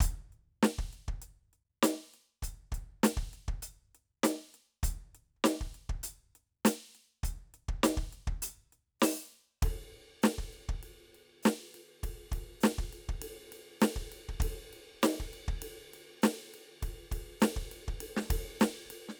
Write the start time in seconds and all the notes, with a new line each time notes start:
0.01 closed hi-hat, kick
0.33 closed hi-hat
0.63 closed hi-hat, snare
0.79 kick
0.94 closed hi-hat
1.09 kick
1.22 closed hi-hat
1.54 closed hi-hat
1.83 closed hi-hat, snare
2.14 closed hi-hat
2.43 closed hi-hat, kick
2.73 kick, closed hi-hat
3.04 closed hi-hat, snare
3.18 kick
3.34 closed hi-hat
3.49 kick
3.63 closed hi-hat
3.95 closed hi-hat
4.24 closed hi-hat, snare
4.55 closed hi-hat
4.84 closed hi-hat, kick
5.15 closed hi-hat
5.37 kick
5.45 closed hi-hat, snare
5.61 kick
5.75 closed hi-hat
5.90 kick
6.04 closed hi-hat
6.36 closed hi-hat
6.66 closed hi-hat, snare
6.96 closed hi-hat
7.24 closed hi-hat, kick
7.55 closed hi-hat
7.69 kick
7.84 closed hi-hat, snare
7.98 kick
8.13 closed hi-hat
8.28 kick
8.43 closed hi-hat
8.73 closed hi-hat
9.00 open hi-hat, snare, hi-hat pedal
9.63 kick, ride
9.95 ride
10.23 snare, hi-hat pedal, ride
10.39 kick
10.53 ride
10.69 kick, crash
10.84 ride
11.15 ride
11.43 snare, hi-hat pedal, ride
11.75 ride
12.04 kick, ride
12.32 kick, ride
12.61 snare, hi-hat pedal, ride
12.79 kick
12.93 ride
13.09 kick
13.22 ride
13.53 ride
13.81 snare, hi-hat pedal, ride
13.96 kick
14.12 ride
14.29 kick
14.41 kick, ride
14.74 ride
14.95 kick
15.03 snare, hi-hat pedal, ride
15.20 kick
15.34 ride
15.49 kick
15.63 ride
15.94 ride
16.23 snare, hi-hat pedal, ride
16.55 ride
16.83 kick, ride
17.12 kick, ride
17.41 snare, hi-hat pedal, ride
17.57 kick
17.72 ride
17.89 kick
18.01 ride
18.17 snare
18.21 snare
18.23 snare
18.26 snare
18.31 kick, ride
18.60 snare, hi-hat pedal, ride
18.87 kick
18.91 ride
19.09 snare